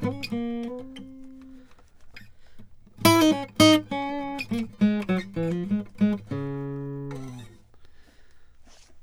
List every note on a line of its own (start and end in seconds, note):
0.06 0.12 C4
0.34 0.67 A#3
0.69 0.84 B3
3.06 3.22 E4
3.23 3.38 D#4
3.33 3.50 C#4
3.61 3.84 D#4
3.93 4.45 C#4
4.53 4.70 A#3
4.83 5.06 G#3
5.10 5.24 F#3
5.38 5.52 E3
5.52 5.67 F3
5.72 5.85 G#3
6.02 6.19 G#3
6.33 7.17 C#3
7.17 7.31 C3